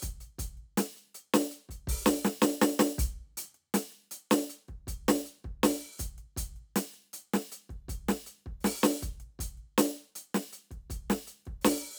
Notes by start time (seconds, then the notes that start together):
0.01 closed hi-hat, kick, hi-hat pedal
0.20 closed hi-hat
0.38 closed hi-hat, kick
0.57 closed hi-hat
0.77 closed hi-hat, snare
0.96 closed hi-hat
1.14 closed hi-hat
1.34 closed hi-hat, snare
1.51 closed hi-hat
1.69 closed hi-hat, kick
1.87 open hi-hat, kick
2.06 snare
2.25 snare, hi-hat pedal
2.42 snare
2.61 snare
2.79 snare
2.98 closed hi-hat, kick
3.37 closed hi-hat
3.54 closed hi-hat
3.74 closed hi-hat, snare
3.92 closed hi-hat
4.11 closed hi-hat
4.30 snare, closed hi-hat
4.49 closed hi-hat
4.68 kick, closed hi-hat
4.87 closed hi-hat, kick
5.08 closed hi-hat, snare
5.25 closed hi-hat
5.44 kick, closed hi-hat
5.63 open hi-hat, snare
5.98 closed hi-hat, kick, hi-hat pedal
6.18 closed hi-hat
6.36 closed hi-hat, kick
6.56 closed hi-hat
6.76 closed hi-hat, snare
6.94 closed hi-hat
7.13 closed hi-hat
7.33 snare, closed hi-hat
7.52 closed hi-hat
7.69 kick, closed hi-hat
7.88 closed hi-hat, kick
8.08 snare
8.26 closed hi-hat
8.46 kick, closed hi-hat
8.60 snare, hi-hat pedal
8.65 open hi-hat
8.83 snare
9.00 closed hi-hat, kick, hi-hat pedal
9.20 closed hi-hat
9.39 closed hi-hat, kick
9.57 closed hi-hat
9.78 closed hi-hat, snare
9.96 closed hi-hat
10.15 closed hi-hat
10.34 snare, closed hi-hat
10.53 closed hi-hat
10.71 kick, closed hi-hat
10.90 closed hi-hat, kick
11.10 snare, closed hi-hat
11.27 closed hi-hat
11.45 kick, closed hi-hat
11.61 open hi-hat, snare, hi-hat pedal